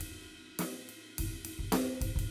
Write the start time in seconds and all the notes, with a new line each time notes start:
0.01 ride
0.59 snare, ride
0.89 ride
1.18 kick, ride
1.45 ride
1.59 kick
1.72 snare, ride
2.01 kick, ride
2.16 kick, ride